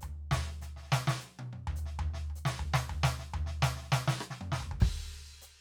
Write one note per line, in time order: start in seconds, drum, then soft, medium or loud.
0.01 floor tom medium
0.01 hi-hat pedal medium
0.31 snare loud
0.31 floor tom loud
0.47 snare soft
0.62 snare soft
0.62 hi-hat pedal medium
0.77 snare soft
0.83 snare soft
0.88 snare soft
0.92 snare loud
1.08 snare loud
1.20 hi-hat pedal medium
1.25 snare soft
1.39 high tom loud
1.53 mid tom medium
1.67 floor tom loud
1.76 hi-hat pedal medium
1.86 snare soft
1.99 floor tom loud
2.14 snare medium
2.30 floor tom medium
2.36 hi-hat pedal medium
2.46 snare loud
2.60 floor tom loud
2.74 snare loud
2.90 floor tom loud
3.04 snare loud
3.04 hi-hat pedal medium
3.19 snare medium
3.34 floor tom loud
3.46 snare medium
3.62 snare loud
3.62 hi-hat pedal medium
3.76 snare soft
3.83 snare soft
3.92 snare loud
4.08 snare loud
4.21 cross-stick medium
4.21 hi-hat pedal medium
4.31 snare medium
4.41 mid tom loud
4.52 snare loud
4.61 floor tom medium
4.71 kick medium
4.71 floor tom medium
4.80 kick loud
4.80 crash loud
5.42 hi-hat pedal medium